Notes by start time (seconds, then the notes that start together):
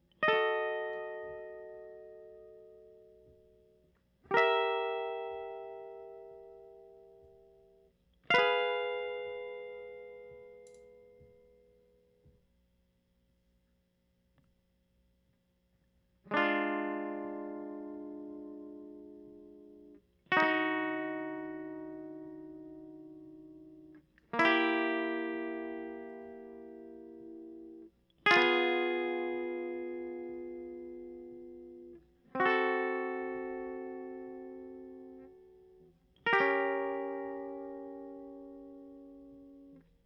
0.23 D#5
0.28 A4
0.33 F#4
4.31 G4 A#4
4.37 E5
8.31 B4 F5
8.39 G#4
16.32 G#3 D4
16.37 F4
20.32 F#4
20.37 D#4
24.34 A#3
24.39 E4
24.45 G4
28.27 G#4
28.31 F4
28.37 B3
32.35 C4
32.40 F#4
32.46 A4
36.27 A#4
36.33 G4
36.41 C#4